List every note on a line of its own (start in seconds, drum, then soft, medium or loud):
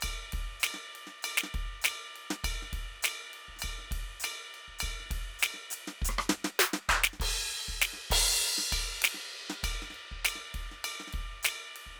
0.01 kick soft
0.01 hi-hat pedal medium
0.01 ride bell loud
0.33 kick soft
0.33 ride medium
0.39 kick soft
0.60 snare loud
0.60 hi-hat pedal medium
0.60 ride bell loud
0.74 snare soft
0.95 ride medium
1.07 snare soft
1.23 hi-hat pedal medium
1.23 ride bell loud
1.38 snare loud
1.44 snare soft
1.54 kick medium
1.54 ride soft
1.66 kick soft
1.82 snare loud
1.82 hi-hat pedal medium
1.82 ride bell loud
2.16 ride soft
2.31 snare medium
2.44 kick soft
2.44 hi-hat pedal soft
2.44 ride bell loud
2.51 kick soft
2.62 snare soft
2.73 kick soft
2.73 ride medium
2.79 kick soft
3.03 snare loud
3.03 hi-hat pedal loud
3.03 ride bell loud
3.33 ride soft
3.48 kick soft
3.57 snare soft
3.57 hi-hat pedal medium
3.62 kick soft
3.62 ride bell loud
3.79 snare soft
3.85 snare soft
3.88 kick soft
3.88 snare soft
3.88 ride medium
3.98 kick soft
4.20 snare medium
4.20 hi-hat pedal loud
4.24 ride bell loud
4.54 ride bell soft
4.68 kick soft
4.79 hi-hat pedal medium
4.79 ride bell loud
4.83 kick soft
4.90 kick soft
5.00 snare soft
5.06 snare soft
5.11 kick soft
5.11 ride medium
5.17 kick soft
5.21 kick soft
5.39 snare loud
5.39 hi-hat pedal medium
5.39 ride bell loud
5.54 snare soft
5.71 hi-hat pedal loud
5.71 ride medium
5.88 snare medium
6.02 kick medium
6.02 hi-hat pedal loud
6.09 kick soft
6.09 cross-stick medium
6.16 kick soft
6.16 cross-stick medium
6.29 snare loud
6.45 snare medium
6.59 snare loud
6.74 snare medium
6.89 kick soft
6.89 percussion loud
7.04 snare loud
7.13 snare soft
7.20 kick medium
7.20 crash medium
7.35 snare soft
7.69 kick soft
7.82 snare loud
7.82 hi-hat pedal medium
7.82 ride loud
7.94 snare soft
8.11 kick medium
8.11 crash loud
8.25 kick soft
8.58 snare soft
8.72 kick soft
8.72 ride bell loud
8.79 kick soft
9.02 snare loud
9.02 hi-hat pedal medium
9.02 ride loud
9.15 snare soft
9.34 ride soft
9.50 snare medium
9.63 kick soft
9.63 hi-hat pedal soft
9.63 ride bell loud
9.74 kick soft
9.82 snare soft
9.90 snare soft
9.95 ride soft
10.12 kick soft
10.25 snare loud
10.25 hi-hat pedal medium
10.25 ride bell loud
10.36 snare soft
10.54 kick soft
10.54 ride medium
10.60 kick soft
10.72 snare soft
10.85 hi-hat pedal soft
10.85 ride bell loud
11.00 snare soft
11.08 snare soft
11.13 kick soft
11.13 ride medium
11.21 kick soft
11.43 snare loud
11.43 hi-hat pedal medium
11.43 ride bell loud
11.76 ride medium
11.87 kick soft
11.91 snare soft
11.96 snare soft